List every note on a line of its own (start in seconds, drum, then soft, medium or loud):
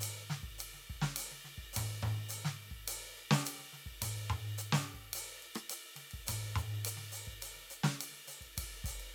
0.01 hi-hat pedal loud
0.01 ride loud
0.30 snare medium
0.44 kick soft
0.59 hi-hat pedal medium
0.59 ride loud
0.74 snare soft
0.90 kick soft
1.02 snare medium
1.17 hi-hat pedal medium
1.17 ride loud
1.32 snare soft
1.45 snare soft
1.58 kick soft
1.74 hi-hat pedal medium
1.74 high tom medium
1.74 ride loud
2.03 high tom medium
2.29 hi-hat pedal medium
2.29 ride medium
2.45 snare medium
2.71 kick soft
2.88 hi-hat pedal loud
2.88 ride loud
3.31 snare loud
3.45 hi-hat pedal medium
3.45 ride loud
3.59 snare soft
3.73 snare soft
3.86 kick soft
4.02 hi-hat pedal medium
4.02 high tom medium
4.02 ride loud
4.30 high tom loud
4.58 hi-hat pedal medium
4.58 ride medium
4.73 snare medium
4.95 kick soft
5.14 hi-hat pedal medium
5.14 ride loud
5.43 ride soft
5.55 cross-stick medium
5.55 ride medium
5.70 hi-hat pedal loud
5.70 ride loud
5.96 snare soft
5.96 ride medium
6.12 kick soft
6.12 ride medium
6.27 hi-hat pedal medium
6.27 high tom medium
6.27 ride loud
6.56 hi-hat pedal medium
6.56 high tom loud
6.85 hi-hat pedal loud
6.85 ride loud
6.97 snare soft
7.12 hi-hat pedal medium
7.12 ride soft
7.26 kick soft
7.26 ride soft
7.42 hi-hat pedal medium
7.42 ride medium
7.56 snare soft
7.71 hi-hat pedal medium
7.71 ride medium
7.84 snare loud
7.84 ride medium
8.01 hi-hat pedal medium
8.01 ride loud
8.12 snare soft
8.28 snare soft
8.28 hi-hat pedal medium
8.28 ride soft
8.41 kick soft
8.41 ride soft
8.57 kick medium
8.57 hi-hat pedal soft
8.57 ride loud
8.70 snare soft
8.85 kick medium
8.85 hi-hat pedal medium
8.85 ride medium
9.00 ride medium